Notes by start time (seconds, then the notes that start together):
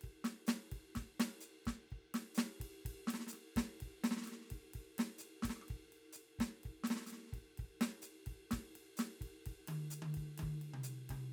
0.01 kick, ride
0.24 snare, ride
0.46 snare, hi-hat pedal, ride
0.72 kick, ride
0.95 kick, snare, ride
1.02 kick
1.19 snare, ride
1.40 hi-hat pedal, ride
1.66 kick, snare, ride
1.91 kick, ride
2.14 snare, ride
2.35 snare, hi-hat pedal, ride
2.60 kick, ride
2.85 kick, ride
2.90 kick
3.07 snare, ride
3.14 snare
3.20 snare
3.27 snare, hi-hat pedal
3.33 snare, ride
3.56 kick, snare, ride
3.61 kick
3.80 kick, ride
3.87 kick
4.04 snare, ride
4.11 snare
4.17 snare
4.21 snare, hi-hat pedal
4.26 snare, ride
4.31 snare
4.36 snare
4.41 snare
4.45 snare
4.48 snare, ride
4.51 kick, snare
4.59 snare
4.62 snare
4.64 snare
4.67 snare
4.74 kick, ride
4.98 snare, ride
5.18 hi-hat pedal, ride
5.42 kick, snare, ride
5.49 snare
5.55 cross-stick
5.61 cross-stick
5.67 kick, snare, ride
5.72 kick, snare
5.77 snare
5.92 ride
6.13 hi-hat pedal, ride
6.39 kick, snare, ride
6.63 kick, ride
6.70 kick
6.84 snare, ride
6.90 snare
6.95 snare
7.01 snare
7.06 snare, hi-hat pedal
7.10 snare, ride
7.17 snare
7.22 snare
7.26 snare
7.30 kick, snare
7.33 snare, ride
7.38 kick, snare
7.42 snare
7.57 kick, ride
7.64 kick
7.81 snare, ride
8.02 hi-hat pedal, ride
8.26 kick, ride
8.32 kick
8.51 kick, snare, ride
8.58 kick
8.75 ride
8.97 snare, hi-hat pedal, ride
9.21 kick, ride
9.26 kick
9.46 kick, ride
9.51 kick
9.68 high tom, ride
9.90 hi-hat pedal, ride
10.02 high tom
10.14 kick, ride
10.38 high tom, ride
10.43 kick
10.48 kick
10.61 ride
10.74 mid tom
10.83 hi-hat pedal, ride
11.09 kick, mid tom, ride